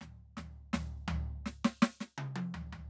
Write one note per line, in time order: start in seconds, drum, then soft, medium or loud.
0.01 snare soft
0.01 floor tom soft
0.37 snare soft
0.37 floor tom medium
0.73 snare medium
0.73 floor tom medium
1.08 floor tom loud
1.46 snare medium
1.65 snare loud
1.82 snare loud
2.00 snare medium
2.18 mid tom loud
2.36 open hi-hat soft
2.36 high tom loud
2.54 floor tom medium
2.73 floor tom medium